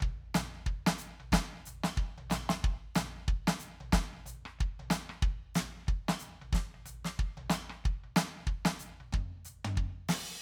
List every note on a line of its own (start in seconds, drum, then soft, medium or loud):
0.01 kick medium
0.01 floor tom medium
0.35 snare loud
0.35 floor tom medium
0.35 hi-hat pedal medium
0.53 snare soft
0.67 kick medium
0.67 floor tom soft
0.87 snare loud
0.99 floor tom soft
0.99 hi-hat pedal medium
1.20 floor tom medium
1.33 kick medium
1.33 snare loud
1.53 floor tom soft
1.66 kick soft
1.66 floor tom soft
1.66 hi-hat pedal medium
1.84 snare medium
1.97 kick medium
1.97 floor tom soft
2.18 floor tom medium
2.31 snare medium
2.31 floor tom medium
2.31 hi-hat pedal medium
2.50 snare medium
2.64 kick loud
2.64 floor tom medium
2.96 snare loud
2.96 floor tom medium
2.96 hi-hat pedal medium
3.29 kick loud
3.29 floor tom soft
3.48 snare loud
3.60 floor tom soft
3.60 hi-hat pedal medium
3.81 floor tom medium
3.93 kick loud
3.93 snare loud
4.14 floor tom soft
4.26 floor tom medium
4.26 hi-hat pedal medium
4.46 cross-stick medium
4.59 kick medium
4.59 floor tom soft
4.80 floor tom medium
4.91 snare loud
4.91 hi-hat pedal medium
5.10 cross-stick medium
5.23 kick loud
5.23 floor tom medium
5.55 snare loud
5.55 floor tom medium
5.55 hi-hat pedal medium
5.77 snare soft
5.88 kick medium
5.88 floor tom soft
6.09 snare loud
6.20 floor tom soft
6.20 hi-hat pedal medium
6.42 floor tom medium
6.53 kick loud
6.53 snare loud
6.75 floor tom soft
6.86 kick soft
6.86 floor tom medium
6.86 hi-hat pedal medium
7.05 snare medium
7.18 kick medium
7.18 floor tom soft
7.38 floor tom medium
7.50 snare loud
7.50 hi-hat pedal medium
7.70 cross-stick medium
7.85 kick loud
7.85 floor tom soft
8.04 floor tom soft
8.17 snare loud
8.17 hi-hat pedal medium
8.38 floor tom soft
8.47 kick medium
8.47 floor tom soft
8.66 snare loud
8.80 floor tom soft
8.80 hi-hat pedal medium
9.01 floor tom soft
9.13 kick medium
9.13 high tom loud
9.33 floor tom soft
9.45 floor tom soft
9.45 hi-hat pedal medium
9.65 high tom loud
9.76 kick medium
9.76 floor tom soft
10.09 snare loud
10.09 hi-hat pedal medium
10.09 crash loud